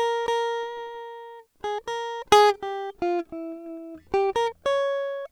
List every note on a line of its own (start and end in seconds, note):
0.00 0.28 A#4
0.28 0.68 A#4
1.66 1.85 G#4
1.90 2.26 A#4
2.34 2.56 G#4
2.65 2.96 G4
3.04 3.26 F4
3.35 4.05 E4
4.16 4.36 G4
4.38 4.57 A#4
4.68 5.30 C#5